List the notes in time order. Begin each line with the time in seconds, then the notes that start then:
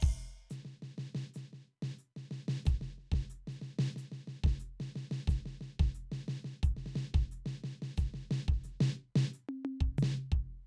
0.01 kick, crash
0.50 snare, hi-hat pedal
0.65 snare
0.83 snare
0.98 snare
1.15 snare
1.34 snare, hi-hat pedal
1.53 snare
1.83 snare
1.99 hi-hat pedal
2.17 snare
2.32 snare
2.49 snare
2.66 kick, snare, hi-hat pedal
2.82 snare
2.99 snare
3.12 kick, snare
3.30 hi-hat pedal
3.48 snare, hi-hat pedal
3.62 snare
3.79 snare
3.97 snare, hi-hat pedal
4.12 snare
4.28 snare
4.44 kick, snare
4.60 hi-hat pedal
4.80 snare, hi-hat pedal
4.96 snare
5.12 snare
5.28 kick, snare, hi-hat pedal
5.46 snare
5.61 snare
5.80 kick, snare
5.95 hi-hat pedal
6.12 snare
6.29 snare
6.45 snare
6.63 kick, hi-hat pedal
6.77 snare
6.87 snare
6.96 snare
7.15 kick, snare
7.32 hi-hat pedal
7.46 snare
7.64 snare
7.83 snare
7.98 kick, snare, hi-hat pedal
8.14 snare
8.31 snare
8.49 kick, snare
8.64 snare, hi-hat pedal
8.81 snare, hi-hat pedal
9.16 snare
9.34 hi-hat pedal
9.49 high tom
9.65 high tom
9.81 kick
9.98 floor tom, hi-hat pedal
10.03 snare
10.32 kick